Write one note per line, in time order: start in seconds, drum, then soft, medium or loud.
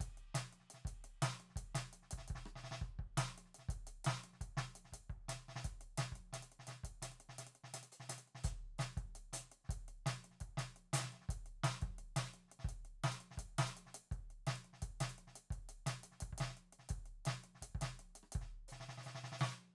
0.01 kick soft
0.01 closed hi-hat medium
0.18 closed hi-hat soft
0.35 snare medium
0.35 closed hi-hat loud
0.53 closed hi-hat soft
0.60 snare soft
0.71 snare soft
0.71 closed hi-hat medium
0.86 kick soft
0.86 closed hi-hat medium
1.05 closed hi-hat soft
1.23 snare medium
1.23 closed hi-hat loud
1.41 closed hi-hat soft
1.50 snare soft
1.57 kick soft
1.57 closed hi-hat medium
1.75 snare medium
1.75 closed hi-hat loud
1.94 closed hi-hat medium
2.03 snare soft
2.12 kick soft
2.12 closed hi-hat medium
2.18 snare soft
2.29 kick soft
2.29 closed hi-hat medium
2.36 snare soft
2.46 cross-stick soft
2.56 snare soft
2.64 snare soft
2.72 snare medium
2.82 kick soft
3.00 kick soft
3.18 snare medium
3.18 closed hi-hat loud
3.39 closed hi-hat soft
3.46 snare soft
3.55 closed hi-hat medium
3.59 snare soft
3.69 kick medium
3.69 closed hi-hat medium
3.88 closed hi-hat medium
4.05 snare medium
4.05 closed hi-hat medium
4.24 closed hi-hat soft
4.34 snare soft
4.42 kick soft
4.42 closed hi-hat medium
4.58 snare medium
4.58 closed hi-hat medium
4.76 closed hi-hat medium
4.85 snare soft
4.93 kick soft
4.93 closed hi-hat medium
5.10 kick soft
5.10 closed hi-hat soft
5.29 snare medium
5.29 closed hi-hat loud
5.49 snare soft
5.49 closed hi-hat soft
5.56 snare medium
5.65 kick soft
5.65 closed hi-hat medium
5.82 closed hi-hat soft
5.98 snare medium
5.98 closed hi-hat loud
6.13 kick soft
6.13 closed hi-hat soft
6.34 snare soft
6.34 closed hi-hat medium
6.43 closed hi-hat medium
6.53 closed hi-hat soft
6.60 snare soft
6.68 snare soft
6.68 closed hi-hat medium
6.84 kick soft
6.84 closed hi-hat medium
7.03 snare soft
7.03 closed hi-hat loud
7.12 closed hi-hat soft
7.21 closed hi-hat soft
7.30 snare soft
7.39 snare soft
7.39 closed hi-hat medium
7.47 closed hi-hat soft
7.56 closed hi-hat soft
7.64 snare soft
7.74 snare soft
7.74 closed hi-hat loud
7.84 closed hi-hat medium
7.93 closed hi-hat soft
8.01 snare soft
8.10 snare soft
8.10 closed hi-hat loud
8.19 closed hi-hat medium
8.28 closed hi-hat soft
8.36 snare soft
8.45 open hi-hat medium
8.45 kick medium
8.45 snare soft
8.79 snare medium
8.79 closed hi-hat medium
8.79 hi-hat pedal medium
8.98 kick soft
8.98 closed hi-hat soft
9.16 closed hi-hat medium
9.34 closed hi-hat loud
9.34 snare soft
9.52 closed hi-hat soft
9.65 snare soft
9.70 kick medium
9.70 closed hi-hat medium
9.89 closed hi-hat soft
10.07 snare medium
10.07 closed hi-hat medium
10.25 closed hi-hat soft
10.32 snare soft
10.41 kick soft
10.41 closed hi-hat medium
10.58 snare medium
10.58 closed hi-hat medium
10.77 closed hi-hat soft
10.94 closed hi-hat loud
10.94 snare medium
10.97 snare medium
11.01 snare soft
11.05 kick soft
11.05 snare soft
11.13 snare soft
11.13 closed hi-hat soft
11.22 snare soft
11.30 kick medium
11.30 snare soft
11.30 closed hi-hat medium
11.47 closed hi-hat soft
11.64 snare medium
11.64 closed hi-hat medium
11.82 kick medium
11.82 closed hi-hat soft
11.99 closed hi-hat soft
12.17 snare medium
12.17 closed hi-hat loud
12.34 closed hi-hat soft
12.49 snare soft
12.49 closed hi-hat soft
12.60 snare soft
12.65 kick medium
12.70 closed hi-hat medium
12.86 closed hi-hat soft
13.04 snare medium
13.04 closed hi-hat medium
13.13 closed hi-hat medium
13.21 closed hi-hat soft
13.32 snare soft
13.38 kick soft
13.38 closed hi-hat medium
13.59 snare medium
13.59 closed hi-hat loud
13.66 snare soft
13.66 closed hi-hat medium
13.78 closed hi-hat medium
13.87 snare soft
13.95 closed hi-hat medium
14.12 kick soft
14.12 closed hi-hat soft
14.31 closed hi-hat soft
14.48 snare medium
14.48 closed hi-hat medium
14.56 closed hi-hat soft
14.65 closed hi-hat soft
14.74 snare soft
14.83 kick soft
14.83 closed hi-hat medium
15.01 snare medium
15.01 closed hi-hat medium
15.10 closed hi-hat medium
15.19 closed hi-hat soft
15.28 snare soft
15.36 closed hi-hat medium
15.51 kick soft
15.51 closed hi-hat soft
15.70 closed hi-hat medium
15.87 snare medium
15.87 closed hi-hat medium
16.04 closed hi-hat medium
16.12 snare soft
16.21 kick soft
16.21 closed hi-hat medium
16.33 kick soft
16.39 snare medium
16.39 closed hi-hat medium
16.48 snare soft
16.58 closed hi-hat soft
16.73 closed hi-hat soft
16.80 snare soft
16.90 kick medium
16.90 closed hi-hat medium
17.06 closed hi-hat soft
17.26 snare medium
17.26 closed hi-hat medium
17.44 closed hi-hat soft
17.56 snare soft
17.63 kick soft
17.63 closed hi-hat medium
17.76 kick soft
17.82 snare medium
17.82 closed hi-hat medium
18.00 closed hi-hat soft
18.16 closed hi-hat medium
18.24 cross-stick soft
18.33 kick medium
18.33 closed hi-hat medium
18.42 snare soft
18.69 snare soft
18.69 hi-hat pedal medium
18.81 snare soft
18.89 snare soft
18.98 snare soft
19.04 snare soft
19.04 hi-hat pedal medium
19.16 snare soft
19.24 snare soft
19.33 snare soft
19.39 snare medium
19.39 hi-hat pedal medium